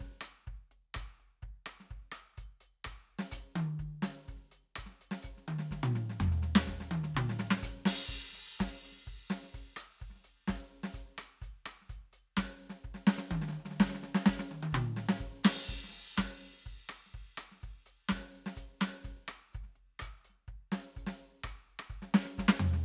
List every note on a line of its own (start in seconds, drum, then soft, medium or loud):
0.01 kick soft
0.01 closed hi-hat soft
0.22 closed hi-hat loud
0.22 cross-stick medium
0.47 kick soft
0.47 closed hi-hat soft
0.72 closed hi-hat soft
0.95 closed hi-hat loud
0.95 kick soft
0.95 cross-stick medium
1.21 closed hi-hat soft
1.43 kick soft
1.43 closed hi-hat soft
1.67 closed hi-hat medium
1.67 cross-stick medium
1.81 snare soft
1.91 kick soft
1.91 closed hi-hat soft
2.12 closed hi-hat medium
2.12 cross-stick medium
2.38 closed hi-hat soft
2.38 kick soft
2.61 closed hi-hat soft
2.85 closed hi-hat medium
2.85 kick soft
2.85 cross-stick medium
3.10 open hi-hat soft
3.19 snare medium
3.32 closed hi-hat loud
3.32 kick soft
3.56 high tom loud
3.80 kick soft
3.80 closed hi-hat medium
4.03 closed hi-hat medium
4.03 snare medium
4.29 closed hi-hat soft
4.29 kick soft
4.37 snare soft
4.52 closed hi-hat soft
4.76 closed hi-hat medium
4.76 kick soft
4.76 cross-stick medium
4.87 snare soft
5.02 closed hi-hat soft
5.12 snare medium
5.23 open hi-hat medium
5.23 kick soft
5.38 snare soft
5.49 high tom loud
5.59 snare soft
5.72 kick soft
5.72 snare soft
5.84 mid tom loud
5.96 snare soft
6.10 snare soft
6.21 kick soft
6.21 floor tom loud
6.32 snare soft
6.43 snare soft
6.56 snare loud
6.67 kick soft
6.67 snare soft
6.67 hi-hat pedal soft
6.81 snare soft
6.92 high tom loud
7.04 snare soft
7.15 kick soft
7.15 mid tom loud
7.30 snare medium
7.40 snare medium
7.51 snare loud
7.63 closed hi-hat loud
7.63 kick soft
7.86 snare loud
7.86 crash loud
8.09 kick soft
8.09 closed hi-hat soft
8.14 snare soft
8.33 closed hi-hat medium
8.33 snare soft
8.38 snare soft
8.60 closed hi-hat loud
8.60 kick soft
8.60 snare medium
8.66 kick soft
8.85 closed hi-hat soft
8.92 snare soft
8.97 snare soft
9.00 snare soft
9.07 kick soft
9.07 closed hi-hat soft
9.31 closed hi-hat medium
9.31 snare medium
9.44 snare soft
9.55 closed hi-hat soft
9.55 kick soft
9.77 closed hi-hat loud
9.77 cross-stick medium
10.00 closed hi-hat soft
10.00 kick soft
10.11 snare soft
10.16 snare soft
10.25 closed hi-hat medium
10.48 closed hi-hat medium
10.48 kick soft
10.48 snare medium
10.73 open hi-hat soft
10.84 snare medium
10.95 closed hi-hat medium
10.95 kick soft
11.19 open hi-hat loud
11.19 cross-stick medium
11.42 closed hi-hat soft
11.42 kick soft
11.66 open hi-hat medium
11.66 cross-stick medium
11.82 snare soft
11.90 closed hi-hat soft
11.90 kick soft
11.90 snare soft
11.95 snare soft
11.97 snare soft
11.99 snare soft
12.13 closed hi-hat soft
12.37 open hi-hat medium
12.37 kick soft
12.37 snare medium
12.62 open hi-hat soft
12.70 snare soft
12.85 kick soft
12.85 closed hi-hat soft
12.95 snare soft
13.08 snare loud
13.19 snare medium
13.32 kick soft
13.32 high tom loud
13.42 snare medium
13.49 snare soft
13.53 high tom medium
13.60 high tom soft
13.66 snare soft
13.71 snare soft
13.76 kick soft
13.76 snare soft
13.81 snare loud
13.90 snare soft
13.95 snare soft
14.04 snare soft
14.15 snare loud
14.26 kick soft
14.26 snare loud
14.26 hi-hat pedal soft
14.40 snare medium
14.52 high tom medium
14.63 high tom loud
14.73 kick soft
14.73 mid tom loud
14.97 snare medium
15.09 snare loud
15.19 kick soft
15.19 hi-hat pedal soft
15.44 snare loud
15.44 crash loud
15.57 snare soft
15.69 closed hi-hat soft
15.69 kick soft
15.85 snare soft
15.89 snare soft
15.92 snare soft
15.92 closed hi-hat soft
16.18 closed hi-hat loud
16.18 kick soft
16.18 snare medium
16.43 open hi-hat soft
16.66 kick soft
16.66 closed hi-hat soft
16.90 closed hi-hat medium
16.90 cross-stick medium
17.07 snare soft
17.15 kick soft
17.15 closed hi-hat soft
17.38 open hi-hat medium
17.38 cross-stick medium
17.52 snare soft
17.62 open hi-hat soft
17.62 kick soft
17.62 snare soft
17.69 snare soft
17.87 closed hi-hat medium
18.09 closed hi-hat medium
18.09 kick soft
18.09 snare medium
18.20 snare soft
18.35 open hi-hat soft
18.47 snare medium
18.57 closed hi-hat medium
18.57 kick soft
18.81 open hi-hat medium
18.81 snare medium
19.05 closed hi-hat soft
19.05 kick soft
19.29 closed hi-hat medium
19.29 cross-stick medium
19.53 open hi-hat soft
19.53 kick soft
19.64 snare soft
19.76 open hi-hat soft
20.00 open hi-hat loud
20.00 kick soft
20.00 cross-stick medium
20.25 open hi-hat soft
20.30 snare soft
20.49 kick soft
20.49 closed hi-hat soft
20.73 open hi-hat medium
20.73 snare medium
20.97 open hi-hat soft
20.97 kick soft
21.07 snare medium
21.20 open hi-hat soft
21.44 open hi-hat medium
21.44 kick soft
21.44 cross-stick medium
21.69 open hi-hat soft
21.80 cross-stick medium
21.90 kick soft
21.90 closed hi-hat medium
22.03 snare soft
22.15 snare loud
22.26 snare soft
22.39 kick soft
22.39 snare medium
22.49 snare loud
22.60 floor tom loud
22.74 snare soft